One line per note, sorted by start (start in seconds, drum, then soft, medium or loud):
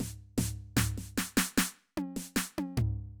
0.00 snare medium
0.00 floor tom medium
0.38 snare medium
0.38 floor tom medium
0.77 snare loud
0.77 floor tom loud
0.98 snare soft
1.18 snare medium
1.37 snare loud
1.58 snare loud
1.97 high tom loud
2.16 snare medium
2.36 snare loud
2.58 high tom loud
2.77 floor tom loud